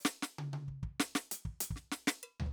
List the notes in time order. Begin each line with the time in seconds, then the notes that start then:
0.03 snare, hi-hat pedal
0.22 snare
0.38 high tom
0.53 high tom
0.68 kick
0.83 kick
1.00 snare
1.15 snare
1.31 closed hi-hat
1.45 kick
1.61 closed hi-hat
1.71 kick
1.76 snare
1.92 snare
2.07 snare
2.23 percussion
2.40 floor tom
2.46 kick